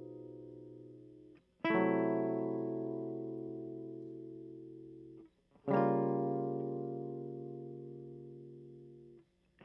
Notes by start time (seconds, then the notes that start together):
1.66 E4
1.71 A3
1.76 C3 F#3
5.70 C#3 G3
5.74 A#3 F4